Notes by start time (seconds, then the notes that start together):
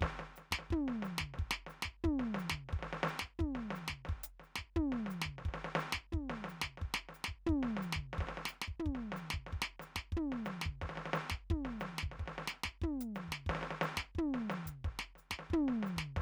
0.01 kick, snare
0.19 snare
0.36 snare, hi-hat pedal
0.51 kick, snare
0.59 snare
0.71 kick, floor tom
0.88 snare
1.03 snare, hi-hat pedal
1.18 kick, snare
1.34 snare
1.39 kick
1.51 snare
1.67 snare, hi-hat pedal
1.82 kick, snare
2.03 kick, floor tom
2.20 snare
2.35 snare
2.39 hi-hat pedal
2.50 kick, snare
2.69 kick, snare
2.79 snare
2.83 snare
2.93 snare
3.03 snare
3.08 hi-hat pedal
3.19 kick, snare
3.38 kick, floor tom
3.55 snare
3.71 snare
3.75 hi-hat pedal
3.88 kick, snare
4.05 kick, snare
4.24 closed hi-hat
4.40 snare, hi-hat pedal
4.56 kick, snare
4.75 kick, floor tom
4.92 snare
5.06 snare, hi-hat pedal
5.22 kick, snare
5.38 snare
5.45 kick, snare
5.54 snare
5.65 snare
5.75 snare, hi-hat pedal
5.93 kick, snare
6.12 kick, floor tom
6.30 snare
6.44 snare
6.49 hi-hat pedal
6.62 kick, snare
6.78 snare
6.82 kick
6.94 snare
7.09 snare
7.14 hi-hat pedal
7.24 kick, snare
7.46 kick, floor tom
7.63 snare
7.77 snare
7.82 hi-hat pedal
7.93 kick, snare
8.13 snare
8.18 kick, snare
8.27 snare
8.29 snare
8.46 snare, hi-hat pedal
8.62 snare
8.68 kick
8.79 floor tom
8.86 kick
8.95 snare
9.12 snare
9.16 hi-hat pedal
9.30 kick, snare
9.47 snare
9.53 kick
9.62 snare
9.80 snare, hi-hat pedal
9.96 kick, snare
10.12 kick, floor tom
10.32 snare
10.45 snare, hi-hat pedal
10.62 snare
10.66 kick
10.82 kick, snare
10.89 snare
10.96 snare
10.97 snare
11.13 snare, hi-hat pedal
11.30 kick, snare
11.50 kick, floor tom
11.65 snare
11.80 snare, hi-hat pedal
11.98 snare
12.03 kick
12.12 snare
12.20 kick, snare
12.26 snare
12.28 snare
12.38 snare
12.48 snare, hi-hat pedal
12.64 kick, snare
12.82 kick, floor tom
13.01 open hi-hat
13.15 snare, hi-hat pedal
13.28 kick
13.32 snare
13.46 kick, snare
13.55 snare
13.61 snare
13.63 snare
13.71 snare
13.81 snare, hi-hat pedal
13.97 kick, snare
14.15 kick, floor tom
14.34 snare
14.50 snare, hi-hat pedal
14.66 closed hi-hat, kick
14.85 kick, snare
14.99 snare
15.15 snare, hi-hat pedal
15.31 kick, snare
15.39 snare
15.50 kick, floor tom
15.68 snare
15.83 snare, hi-hat pedal
15.96 kick, snare
16.16 kick, snare